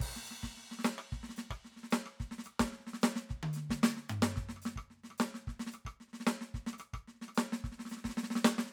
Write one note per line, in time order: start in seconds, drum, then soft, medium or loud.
0.01 kick soft
0.01 crash medium
0.13 kick soft
0.13 snare soft
0.26 hi-hat pedal medium
0.31 snare soft
0.44 kick soft
0.44 snare soft
0.58 snare soft
0.64 snare soft
0.69 snare soft
0.72 snare soft
0.80 snare soft
0.84 snare medium
0.84 hi-hat pedal medium
0.99 cross-stick medium
1.13 kick soft
1.13 snare soft
1.20 kick soft
1.20 snare soft
1.30 snare soft
1.37 snare medium
1.37 hi-hat pedal soft
1.51 kick soft
1.51 cross-stick medium
1.65 snare soft
1.72 snare soft
1.77 snare soft
1.84 snare soft
1.91 snare loud
1.91 hi-hat pedal medium
2.07 cross-stick medium
2.21 kick soft
2.21 snare soft
2.32 snare soft
2.39 snare soft
2.45 cross-stick medium
2.45 hi-hat pedal medium
2.60 kick soft
2.60 snare loud
2.66 snare soft
2.73 snare soft
2.80 snare soft
2.86 snare soft
2.94 snare medium
3.02 snare loud
3.02 hi-hat pedal soft
3.16 snare medium
3.30 kick soft
3.30 snare soft
3.37 kick soft
3.44 high tom medium
3.54 snare soft
3.54 hi-hat pedal medium
3.70 kick soft
3.70 snare medium
3.84 snare loud
3.97 snare soft
4.10 hi-hat pedal soft
4.10 floor tom loud
4.23 snare loud
4.37 kick soft
4.37 snare soft
4.44 kick soft
4.49 snare soft
4.57 cross-stick soft
4.62 snare medium
4.62 hi-hat pedal medium
4.77 kick soft
4.77 cross-stick medium
4.91 snare soft
4.97 snare soft
5.03 snare soft
5.11 cross-stick soft
5.19 snare medium
5.19 hi-hat pedal medium
5.35 snare soft
5.48 kick soft
5.48 snare soft
5.60 snare medium
5.67 snare medium
5.72 cross-stick medium
5.72 hi-hat pedal soft
5.86 kick soft
5.86 cross-stick medium
6.01 snare soft
6.08 snare soft
6.14 snare soft
6.21 snare soft
6.27 snare loud
6.27 hi-hat pedal soft
6.42 snare soft
6.55 kick soft
6.55 snare soft
6.67 snare medium
6.74 cross-stick medium
6.79 cross-stick medium
6.79 hi-hat pedal soft
6.94 kick soft
6.94 cross-stick medium
7.08 snare soft
7.15 snare soft
7.19 snare soft
7.22 snare soft
7.29 cross-stick medium
7.35 snare loud
7.35 hi-hat pedal soft
7.53 snare medium
7.65 kick soft
7.65 snare soft
7.72 snare soft
7.78 snare soft
7.80 snare soft
7.86 snare soft
7.86 hi-hat pedal soft
7.92 snare medium
7.97 snare soft
8.05 kick soft
8.05 snare medium
8.10 snare medium
8.18 snare medium
8.24 snare medium
8.31 snare medium
8.36 snare medium
8.42 snare soft
8.45 snare loud
8.45 hi-hat pedal medium
8.59 snare medium
8.66 snare soft